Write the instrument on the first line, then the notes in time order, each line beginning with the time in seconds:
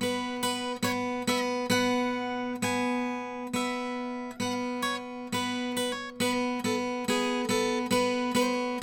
acoustic guitar
0.02 B3 B4
0.44 B3 B4
0.84 B3 C#5
1.29 B3 E5
1.71 B3 F#5
2.63 B3 G#5
3.55 B3 E5
4.41 B3 F#5
4.84 C#5
5.34 B3 B4
5.78 B4
5.93 C#5
6.21 B3 B4
6.66 B3 A4
7.10 B3 G#4
7.50 B3 A4
7.92 B3 B4
8.37 B3 B4
8.48 C#5